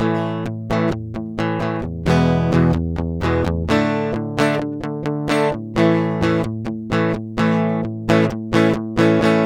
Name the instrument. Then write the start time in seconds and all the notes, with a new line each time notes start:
acoustic guitar
0.00 A2 E3 A3
0.47 A2
0.72 A2 E3 A3
0.93 A2
1.15 A2
1.40 A2 E3 A3
1.61 A2 E3 A3
1.83 E2
2.08 E2 B2 E3 G#3 B3
2.12 E4
2.52 E2 B2 B3 E4
2.56 E3 G#3
2.76 E2
2.97 E2
3.22 E2 B2 E3
3.27 G#3 B3
3.44 E2 A2
3.70 A2 D3 A3 D4
4.14 A2 D3
4.40 D3 A3 D4
4.61 D3
4.85 D3 A3
5.08 A3
5.32 A3 D4
5.54 A2 D3
5.77 A2 E3 A3
5.81 C#4
6.24 A2 E3 A3 C#4
6.45 A2
6.66 A2
6.93 A2 E3 A3 C#4
7.15 A2
7.39 A2 E3 A3 C#4
7.86 A2
8.10 A2 E3 A3 C#4
8.31 A2
8.54 A2 E3 A3 C#4
8.75 A2
8.99 A2 E3 A3 C#4
9.22 A2 E3 A3
9.27 C#4